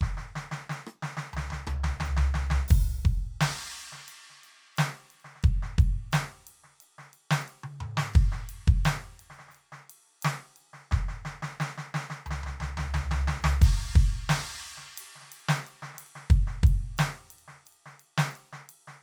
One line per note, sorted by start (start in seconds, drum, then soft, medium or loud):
0.01 kick medium
0.01 snare medium
0.17 snare medium
0.36 snare medium
0.52 snare medium
0.70 snare medium
0.70 hi-hat pedal medium
0.87 cross-stick medium
1.03 snare medium
1.17 snare medium
1.33 snare medium
1.33 floor tom medium
1.33 hi-hat pedal medium
1.50 snare medium
1.50 floor tom loud
1.67 cross-stick medium
1.67 floor tom loud
1.84 snare medium
1.84 floor tom loud
2.00 snare medium
2.00 floor tom loud
2.05 hi-hat pedal medium
2.17 snare medium
2.17 floor tom loud
2.34 snare medium
2.34 floor tom loud
2.46 hi-hat pedal soft
2.50 snare medium
2.50 floor tom loud
2.68 open hi-hat loud
2.68 kick loud
2.68 ride medium
2.81 ride soft
3.05 kick loud
3.41 snare loud
3.41 crash loud
3.72 ride soft
3.92 snare soft
4.08 hi-hat pedal medium
4.08 ride medium
4.30 snare soft
4.44 ride soft
4.76 snare loud
4.76 hi-hat pedal medium
4.76 ride medium
5.10 ride soft
5.20 ride soft
5.25 snare soft
5.36 snare soft
5.43 kick loud
5.43 ride soft
5.63 snare soft
5.78 kick loud
5.78 ride soft
6.11 snare loud
6.11 hi-hat pedal medium
6.11 ride medium
6.47 ride medium
6.64 snare soft
6.80 hi-hat pedal medium
6.80 ride soft
6.98 snare soft
7.13 ride soft
7.31 snare loud
7.40 hi-hat pedal medium
7.48 ride soft
7.64 high tom medium
7.81 mid tom loud
7.97 snare loud
8.14 kick loud
8.14 crash medium
8.32 snare medium
8.49 ride medium
8.68 kick loud
8.85 snare loud
8.85 ride medium
9.19 ride soft
9.30 snare soft
9.30 ride soft
9.39 snare soft
9.48 snare soft
9.48 hi-hat pedal medium
9.55 ride soft
9.72 snare soft
9.90 ride medium
10.21 snare loud
10.21 hi-hat pedal soft
10.21 ride medium
10.56 ride soft
10.73 snare soft
10.91 kick medium
10.91 snare medium
11.09 snare soft
11.25 snare medium
11.42 snare medium
11.60 snare loud
11.60 hi-hat pedal medium
11.78 snare medium
11.94 snare loud
12.10 snare medium
12.26 floor tom medium
12.26 hi-hat pedal medium
12.31 snare medium
12.43 snare medium
12.43 floor tom medium
12.60 snare medium
12.60 floor tom loud
12.77 snare medium
12.77 floor tom loud
12.94 snare medium
12.94 floor tom loud
12.94 hi-hat pedal soft
13.11 snare medium
13.11 floor tom loud
13.28 snare loud
13.28 floor tom loud
13.42 snare loud
13.42 floor tom loud
13.42 hi-hat pedal soft
13.62 kick loud
13.62 hi-hat pedal soft
13.62 ride medium
13.62 crash loud
13.95 kick loud
14.29 snare loud
14.29 crash loud
14.77 snare soft
14.96 hi-hat pedal medium
14.96 ride loud
15.16 snare soft
15.21 snare soft
15.32 ride medium
15.39 ride soft
15.49 snare loud
15.56 hi-hat pedal medium
15.67 ride soft
15.82 snare medium
15.94 snare soft
15.98 ride medium
16.07 ride soft
16.15 snare soft
16.30 kick loud
16.30 ride soft
16.47 snare soft
16.63 kick loud
16.63 ride medium
16.97 snare loud
16.97 hi-hat pedal medium
16.97 ride medium
17.31 ride medium
17.39 ride soft
17.48 snare soft
17.65 hi-hat pedal medium
17.65 ride soft
17.73 ride soft
17.86 snare soft
18.00 ride soft
18.18 snare loud
18.30 hi-hat pedal medium
18.36 ride soft
18.53 snare soft
18.69 ride medium
18.88 snare soft